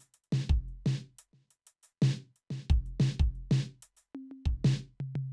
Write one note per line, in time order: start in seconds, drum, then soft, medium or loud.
0.01 hi-hat pedal medium
0.15 closed hi-hat soft
0.25 closed hi-hat soft
0.33 snare loud
0.40 snare soft
0.50 kick medium
0.69 closed hi-hat soft
0.87 snare loud
1.19 closed hi-hat medium
1.34 snare soft
1.51 closed hi-hat soft
1.68 closed hi-hat medium
1.84 hi-hat pedal medium
2.03 snare loud
2.10 snare soft
2.37 closed hi-hat soft
2.51 snare medium
2.71 kick medium
2.71 closed hi-hat soft
2.87 closed hi-hat soft
3.01 snare loud
3.20 kick medium
3.20 closed hi-hat soft
3.36 closed hi-hat soft
3.52 snare loud
3.83 closed hi-hat medium
3.98 hi-hat pedal medium
4.16 high tom medium
4.32 high tom medium
4.46 kick medium
4.65 snare loud
5.01 floor tom medium
5.16 floor tom loud